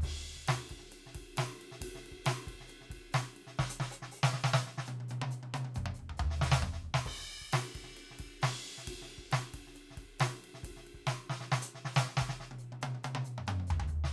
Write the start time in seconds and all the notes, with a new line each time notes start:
0.01 kick, hi-hat pedal, floor tom, ride
0.37 kick
0.48 snare, hi-hat pedal, ride
0.70 kick, ride
0.77 kick, snare
0.91 hi-hat pedal, ride
1.07 snare
1.15 kick, ride
1.22 kick
1.36 snare, hi-hat pedal, ride
1.61 ride
1.72 snare
1.81 kick, hi-hat pedal, ride
1.88 kick
1.95 snare
2.06 ride
2.12 kick
2.17 kick
2.25 snare, hi-hat pedal, ride
2.47 kick, ride
2.54 kick
2.61 snare
2.68 hi-hat pedal, ride
2.81 snare
2.90 kick, ride
2.97 kick
3.12 snare, hi-hat pedal, ride
3.37 ride
3.47 snare
3.58 kick, snare, hi-hat pedal
3.66 closed hi-hat, kick
3.80 snare
3.91 open hi-hat
3.95 hi-hat pedal
4.02 snare
4.12 open hi-hat
4.17 closed hi-hat, hi-hat pedal
4.23 snare
4.34 snare
4.40 snare, hi-hat pedal
4.54 snare
4.63 snare, hi-hat pedal
4.78 snare
4.86 hi-hat pedal, high tom
5.00 high tom
5.09 hi-hat pedal, high tom
5.22 high tom
5.31 hi-hat pedal, high tom
5.43 high tom
5.54 hi-hat pedal, high tom
5.65 high tom
5.75 kick, hi-hat pedal, mid tom
5.85 kick, mid tom
5.94 hi-hat pedal
5.99 floor tom
6.10 floor tom
6.17 hi-hat pedal, floor tom
6.31 snare
6.36 kick, hi-hat pedal
6.42 snare
6.46 kick
6.52 snare
6.60 kick, hi-hat pedal, mid tom
6.73 snare
6.85 mid tom
6.94 snare
7.04 kick, hi-hat pedal, crash
7.16 snare
7.19 snare
7.22 snare
7.42 kick
7.53 snare, hi-hat pedal, ride
7.75 kick, ride
7.81 kick, snare
7.97 hi-hat pedal, ride
8.11 snare
8.19 kick, ride
8.26 kick
8.42 snare, hi-hat pedal, ride
8.65 ride
8.78 snare
8.86 kick, hi-hat pedal, ride
8.94 kick
8.97 kick
9.02 snare
9.10 ride
9.18 kick
9.32 snare, hi-hat pedal, ride
9.54 kick, ride
9.60 kick
9.67 snare
9.75 hi-hat pedal, ride
9.91 snare
9.97 kick, ride
10.19 snare, hi-hat pedal, ride
10.44 ride
10.55 snare
10.64 kick, hi-hat pedal, ride
10.70 kick
10.77 snare
10.87 ride
10.95 kick
11.00 kick
11.07 snare, hi-hat pedal, ride
11.30 snare
11.41 snare
11.51 snare, hi-hat pedal
11.62 closed hi-hat
11.75 snare
11.85 snare
11.94 snare, hi-hat pedal
12.08 snare
12.17 snare
12.21 kick, hi-hat pedal
12.28 kick, snare
12.40 snare
12.51 high tom
12.59 hi-hat pedal
12.64 high tom
12.72 high tom
12.82 hi-hat pedal, high tom
12.95 high tom
13.04 hi-hat pedal, high tom
13.15 high tom
13.25 hi-hat pedal
13.38 mid tom
13.47 hi-hat pedal
13.60 mid tom
13.67 kick, floor tom, hi-hat pedal
13.80 floor tom
13.88 kick, hi-hat pedal
13.97 kick
14.04 snare